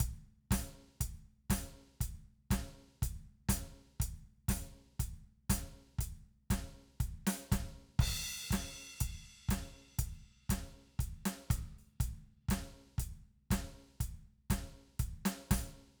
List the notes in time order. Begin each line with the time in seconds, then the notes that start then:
0.00 kick, open hi-hat
0.51 kick, snare, open hi-hat
1.00 kick, closed hi-hat
1.50 kick, snare, open hi-hat
2.00 kick, open hi-hat
2.50 kick, snare, open hi-hat
3.02 kick, open hi-hat
3.49 open hi-hat, kick, snare
4.00 kick, closed hi-hat
4.48 kick, snare, open hi-hat
4.99 kick, open hi-hat
5.49 open hi-hat, kick, snare
5.98 kick, open hi-hat
6.50 kick, snare, open hi-hat
7.00 kick, open hi-hat
7.27 snare, open hi-hat
7.52 kick, snare, open hi-hat
7.99 kick, crash
8.50 kick, snare, open hi-hat
9.00 kick, closed hi-hat
9.49 kick, snare, open hi-hat
9.99 kick, closed hi-hat
10.49 kick, snare, closed hi-hat
10.99 kick, open hi-hat
11.25 snare, open hi-hat
11.50 kick, cross-stick, open hi-hat
11.78 open hi-hat
12.00 kick, open hi-hat
12.48 kick, snare, open hi-hat
12.98 kick, open hi-hat
13.50 kick, snare, open hi-hat
14.00 kick, open hi-hat
14.50 kick, snare, open hi-hat
14.99 kick, open hi-hat
15.25 snare, open hi-hat
15.51 kick, snare, open hi-hat